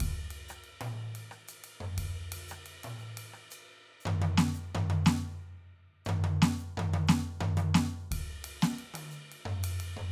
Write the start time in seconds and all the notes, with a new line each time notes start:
0.01 kick, ride
0.31 ride
0.49 cross-stick, hi-hat pedal
0.64 ride
0.81 mid tom, ride
1.16 ride
1.32 cross-stick
1.48 hi-hat pedal, ride
1.64 ride
1.81 floor tom
1.98 kick, ride
2.33 ride
2.49 cross-stick, hi-hat pedal
2.66 ride
2.84 mid tom, ride
2.99 hi-hat pedal
3.18 ride
3.34 cross-stick
3.51 hi-hat pedal, ride bell
4.01 hi-hat pedal
4.06 floor tom, high tom
4.22 high tom
4.38 snare
4.55 hi-hat pedal
4.75 floor tom, high tom
4.90 high tom
5.05 snare, hi-hat pedal
6.05 floor tom, hi-hat pedal
6.09 high tom
6.24 high tom
6.42 snare
6.59 hi-hat pedal
6.78 floor tom, high tom
6.94 high tom
7.08 snare, hi-hat pedal
7.41 floor tom, high tom
7.57 hi-hat pedal, high tom
7.75 snare
8.12 kick, ride
8.45 ride
8.62 snare, hi-hat pedal
8.79 ride
8.94 high tom, ride
9.11 hi-hat pedal
9.32 ride
9.46 floor tom
9.63 hi-hat pedal, ride
9.81 ride
9.97 floor tom